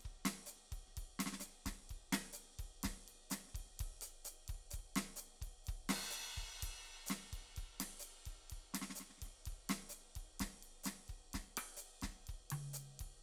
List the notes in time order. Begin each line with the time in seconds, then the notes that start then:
0.01 ride
0.05 kick
0.25 snare, ride
0.46 hi-hat pedal, ride
0.72 kick, ride
0.77 kick
0.87 snare
0.90 snare
0.97 kick, ride
1.02 kick
1.19 snare, ride
1.26 snare
1.33 snare
1.40 snare, hi-hat pedal
1.49 snare
1.66 kick, snare, ride
1.71 kick
1.90 kick, ride
1.96 kick
2.13 snare, ride
2.33 hi-hat pedal, ride
2.39 snare
2.59 kick, ride
2.64 kick
2.83 kick, snare, ride
2.90 kick
3.08 ride
3.30 snare, hi-hat pedal, ride
3.48 snare
3.55 kick, ride
3.60 kick
3.66 snare
3.80 kick, ride
4.01 closed hi-hat, ride
4.25 hi-hat pedal, ride
4.48 kick, ride
4.55 kick
4.71 kick, hi-hat pedal, ride
4.79 kick
4.96 snare, ride
5.16 hi-hat pedal, ride
5.42 kick, ride
5.47 kick
5.64 hi-hat pedal, ride
5.69 kick
5.89 snare, crash
6.11 hi-hat pedal
6.38 kick
6.43 kick
6.60 kick, hi-hat pedal, ride
6.68 kick
6.85 ride
7.06 snare, hi-hat pedal, ride
7.33 kick, ride
7.57 kick, ride
7.63 kick
7.80 snare, ride
8.00 hi-hat pedal, ride
8.26 kick, ride
8.50 kick, ride
8.57 kick
8.74 snare, ride
8.82 snare
8.90 snare
8.96 hi-hat pedal, ride
9.00 snare
9.10 snare
9.18 snare
9.22 kick, snare, ride
9.31 snare
9.36 snare
9.40 snare
9.44 kick, snare, ride
9.52 kick
9.70 snare, ride
9.90 hi-hat pedal, ride
10.16 kick, ride
10.40 kick, snare, ride
10.46 kick
10.63 ride
10.84 snare, hi-hat pedal, ride
11.08 kick, ride
11.34 kick, snare, ride
11.39 kick
11.57 cross-stick, ride
11.77 hi-hat pedal, ride
12.02 kick, snare, ride
12.09 kick
12.27 kick, ride
12.34 kick
12.51 high tom, ride
12.74 hi-hat pedal, ride
13.00 kick, ride
13.06 kick